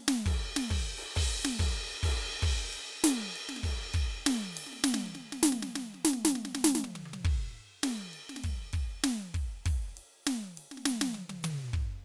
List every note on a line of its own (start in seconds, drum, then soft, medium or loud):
0.01 snare soft
0.09 snare loud
0.26 kick medium
0.26 ride medium
0.57 snare loud
0.70 kick medium
0.70 crash medium
0.98 ride medium
1.16 kick medium
1.16 crash loud
1.45 snare loud
1.59 kick medium
1.59 ride loud
1.88 crash soft
2.04 kick medium
2.04 ride loud
2.43 kick medium
2.43 crash medium
2.49 closed hi-hat soft
2.73 ride medium
3.04 snare loud
3.04 ride loud
3.31 hi-hat pedal soft
3.36 ride medium
3.49 snare medium
3.57 snare soft
3.64 kick medium
3.64 ride medium
3.94 kick medium
3.94 ride medium
4.24 snare loud
4.24 hi-hat pedal soft
4.24 ride medium
4.53 hi-hat pedal soft
4.57 ride loud
4.67 snare soft
4.73 snare soft
4.78 snare soft
4.84 snare loud
4.84 hi-hat pedal loud
4.95 snare medium
5.06 snare soft
5.15 snare soft
5.33 snare medium
5.43 snare loud
5.43 hi-hat pedal medium
5.53 snare medium
5.63 snare medium
5.76 snare medium
5.95 snare soft
6.05 snare loud
6.14 snare soft
6.25 snare loud
6.36 snare medium
6.46 snare medium
6.55 snare medium
6.65 snare loud
6.75 snare medium
6.85 high tom medium
6.96 high tom medium
7.06 cross-stick soft
7.14 high tom medium
7.25 kick medium
7.25 crash soft
7.83 snare loud
7.83 ride medium
8.14 ride medium
8.30 snare soft
8.37 snare medium
8.44 kick medium
8.44 ride medium
8.73 kick medium
8.73 ride medium
9.04 snare loud
9.04 ride medium
9.35 kick medium
9.35 ride medium
9.66 kick medium
9.66 ride loud
9.97 ride medium
10.23 hi-hat pedal soft
10.27 snare loud
10.27 ride medium
10.54 hi-hat pedal soft
10.58 ride medium
10.72 snare soft
10.78 snare soft
10.86 snare loud
10.86 hi-hat pedal loud
11.02 snare loud
11.15 high tom medium
11.30 high tom medium
11.44 hi-hat pedal medium
11.44 mid tom loud
11.74 kick medium